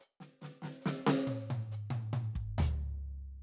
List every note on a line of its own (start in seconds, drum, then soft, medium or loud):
0.00 hi-hat pedal medium
0.20 snare soft
0.41 snare soft
0.41 hi-hat pedal soft
0.62 snare soft
0.64 snare soft
0.81 hi-hat pedal medium
0.86 snare medium
1.07 snare loud
1.27 hi-hat pedal soft
1.27 high tom medium
1.50 closed hi-hat soft
1.50 high tom loud
1.72 hi-hat pedal medium
1.90 high tom loud
2.13 high tom loud
2.35 kick medium
2.58 open hi-hat loud
2.58 floor tom loud